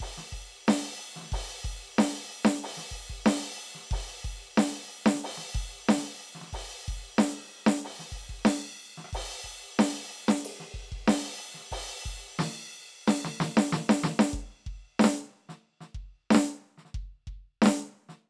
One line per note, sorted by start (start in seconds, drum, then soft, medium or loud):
0.01 kick medium
0.01 crash medium
0.18 snare soft
0.33 kick medium
0.68 snare loud
0.68 crash loud
1.17 snare soft
1.22 snare soft
1.26 snare soft
1.33 kick medium
1.33 crash loud
1.65 kick medium
1.99 snare loud
1.99 crash loud
2.05 cross-stick medium
2.45 snare loud
2.64 crash loud
2.78 snare soft
2.92 kick soft
3.10 kick medium
3.26 snare loud
3.26 crash loud
3.75 snare soft
3.81 cross-stick soft
3.88 kick medium
3.88 snare soft
3.93 crash loud
4.25 kick medium
4.58 snare loud
4.58 crash loud
4.71 snare soft
5.07 snare loud
5.15 snare soft
5.24 crash loud
5.38 snare soft
5.55 kick medium
5.89 snare loud
5.89 crash loud
5.97 snare soft
6.03 snare soft
6.35 snare soft
6.42 snare soft
6.45 snare soft
6.47 snare soft
6.53 kick medium
6.53 crash loud
6.89 kick medium
7.19 snare loud
7.19 crash medium
7.34 snare soft
7.67 snare loud
7.85 crash medium
8.00 snare soft
8.13 kick medium
8.30 kick soft
8.46 snare loud
8.46 crash loud
8.98 snare soft
9.05 cross-stick medium
9.09 cross-stick soft
9.13 kick medium
9.13 crash loud
9.45 kick soft
9.79 snare loud
9.79 crash loud
10.29 snare loud
10.46 crash loud
10.60 snare soft
10.75 kick medium
10.93 kick medium
11.08 snare loud
11.08 crash loud
11.55 snare soft
11.61 cross-stick soft
11.72 kick medium
11.72 crash loud
12.06 kick medium
12.39 snare loud
12.39 crash loud
13.08 snare loud
13.08 crash loud
13.25 snare medium
13.41 snare loud
13.58 snare loud
13.73 snare loud
13.90 snare loud
14.04 snare loud
14.20 snare loud
14.34 kick medium
14.67 kick medium
15.00 snare loud
15.05 snare loud
15.50 snare medium
15.81 snare soft
15.95 kick medium
16.31 snare loud
16.35 snare loud
16.78 snare soft
16.86 snare soft
16.95 kick medium
17.28 kick soft
17.63 snare loud
17.66 snare loud
18.10 snare soft